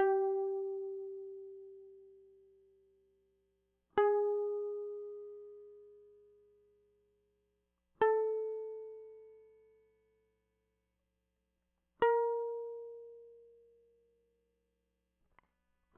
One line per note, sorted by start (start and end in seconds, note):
0.00 3.71 G4
3.98 7.56 G#4
8.02 10.51 A4
12.02 14.64 A#4